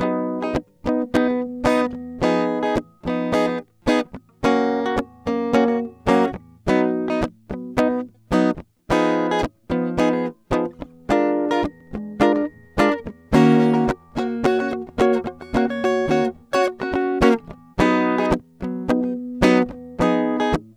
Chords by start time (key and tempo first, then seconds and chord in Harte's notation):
D# minor, 108 BPM
0.00 G#:min7(*1)/b7
2.22 C#:9(*1)/3
4.44 F#:maj
6.67 B:maj/5
8.89 F:hdim7
11.11 A#:7/b7
13.33 D#:min7
17.78 G#:min7(7,*1)/b7
20.00 C#:9(*1)/3